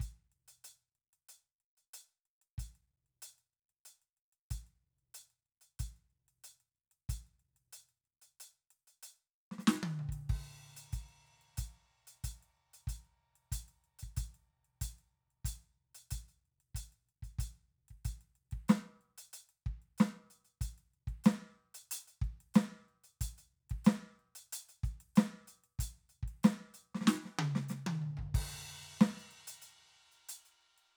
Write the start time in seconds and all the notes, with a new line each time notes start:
0.00 closed hi-hat, kick
0.32 closed hi-hat
0.48 closed hi-hat
0.65 closed hi-hat
0.82 closed hi-hat
0.96 closed hi-hat
1.14 closed hi-hat
1.29 closed hi-hat
1.61 closed hi-hat
1.78 closed hi-hat
1.94 closed hi-hat
2.10 closed hi-hat
2.26 closed hi-hat
2.42 closed hi-hat
2.58 closed hi-hat, kick
2.76 closed hi-hat
3.07 closed hi-hat
3.23 closed hi-hat
3.39 closed hi-hat
3.54 closed hi-hat
3.70 closed hi-hat
3.86 closed hi-hat
4.02 closed hi-hat
4.18 closed hi-hat
4.33 closed hi-hat
4.51 closed hi-hat, kick
4.67 closed hi-hat
4.99 closed hi-hat
5.15 closed hi-hat
5.31 closed hi-hat
5.47 closed hi-hat
5.62 closed hi-hat
5.80 closed hi-hat, kick
5.97 closed hi-hat
6.11 closed hi-hat
6.29 closed hi-hat
6.44 closed hi-hat
6.61 closed hi-hat
6.76 closed hi-hat
6.92 closed hi-hat
7.10 closed hi-hat, kick
7.27 closed hi-hat
7.40 closed hi-hat
7.57 closed hi-hat
7.73 closed hi-hat
7.89 closed hi-hat
8.06 closed hi-hat
8.22 closed hi-hat
8.41 closed hi-hat
8.71 closed hi-hat
8.88 closed hi-hat
9.03 closed hi-hat
9.17 closed hi-hat
9.52 snare
9.59 snare, hi-hat pedal
9.68 snare
9.83 high tom
10.00 mid tom
10.09 kick, closed hi-hat
10.30 kick, crash
10.45 closed hi-hat
10.56 closed hi-hat
10.77 closed hi-hat
10.93 closed hi-hat, kick
11.09 closed hi-hat
11.27 closed hi-hat
11.42 closed hi-hat
11.58 closed hi-hat, kick
11.74 closed hi-hat
12.08 closed hi-hat
12.24 closed hi-hat, kick
12.43 closed hi-hat
12.57 closed hi-hat
12.74 closed hi-hat
12.88 closed hi-hat, kick
13.05 closed hi-hat
13.36 closed hi-hat
13.52 closed hi-hat, kick
13.69 closed hi-hat
13.84 closed hi-hat
13.99 closed hi-hat, kick
14.17 closed hi-hat, kick
14.35 closed hi-hat
14.65 closed hi-hat
14.82 closed hi-hat, kick
14.99 closed hi-hat
15.31 closed hi-hat
15.45 closed hi-hat, kick
15.63 closed hi-hat
15.95 closed hi-hat
16.11 closed hi-hat, kick
16.29 closed hi-hat
16.46 closed hi-hat
16.61 closed hi-hat
16.75 closed hi-hat, kick
16.93 closed hi-hat
17.09 closed hi-hat
17.23 closed hi-hat, kick
17.39 closed hi-hat, kick
17.57 closed hi-hat
17.89 kick, closed hi-hat
18.05 closed hi-hat, kick
18.21 closed hi-hat
18.36 closed hi-hat
18.52 kick, closed hi-hat
18.69 closed hi-hat, snare
19.01 closed hi-hat
19.18 closed hi-hat
19.34 closed hi-hat
19.49 closed hi-hat
19.67 kick, closed hi-hat
19.82 closed hi-hat
19.98 closed hi-hat, snare
20.31 closed hi-hat
20.45 closed hi-hat
20.61 closed hi-hat, kick
20.78 closed hi-hat
20.94 closed hi-hat
21.08 kick, closed hi-hat
21.24 closed hi-hat, snare
21.75 closed hi-hat
21.92 closed hi-hat
22.08 closed hi-hat
22.22 kick, closed hi-hat
22.41 closed hi-hat
22.55 closed hi-hat, snare
22.89 closed hi-hat
23.04 closed hi-hat
23.21 closed hi-hat, kick
23.38 closed hi-hat
23.70 kick, closed hi-hat
23.85 closed hi-hat, snare
24.20 closed hi-hat
24.36 closed hi-hat
24.53 closed hi-hat
24.69 closed hi-hat
24.84 closed hi-hat, kick
25.01 closed hi-hat
25.16 closed hi-hat, snare
25.48 closed hi-hat
25.64 closed hi-hat
25.79 closed hi-hat, kick
25.96 closed hi-hat
26.10 closed hi-hat
26.23 kick
26.28 closed hi-hat
26.44 closed hi-hat, snare
26.74 closed hi-hat
26.95 snare
27.01 snare
27.06 snare
27.08 snare
27.26 snare
27.39 high tom
27.56 snare
27.69 snare, hi-hat pedal
27.87 high tom
28.02 mid tom
28.17 kick, floor tom
28.35 kick, crash
28.49 closed hi-hat
28.67 closed hi-hat
28.84 closed hi-hat
29.01 snare
29.19 closed hi-hat
29.31 closed hi-hat
29.48 closed hi-hat
29.62 closed hi-hat
29.80 closed hi-hat
30.12 closed hi-hat
30.29 closed hi-hat
30.46 closed hi-hat
30.61 closed hi-hat
30.78 closed hi-hat